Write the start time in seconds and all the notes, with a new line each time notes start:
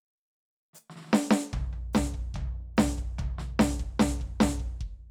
0.73 snare, hi-hat pedal
0.90 snare
0.96 snare
1.00 snare
1.04 snare
1.08 snare
1.13 snare
1.31 snare
1.53 kick, floor tom
1.73 kick, floor tom
1.93 snare, floor tom, hi-hat pedal
2.14 kick, floor tom
2.34 kick, floor tom
2.77 snare, floor tom, hi-hat pedal
2.97 kick, floor tom
3.18 kick, floor tom, hi-hat pedal
3.38 snare, floor tom
3.59 snare, floor tom
3.79 kick, floor tom
3.99 snare, floor tom
4.20 kick, floor tom
4.40 snare, floor tom
4.45 snare
4.59 kick
4.81 kick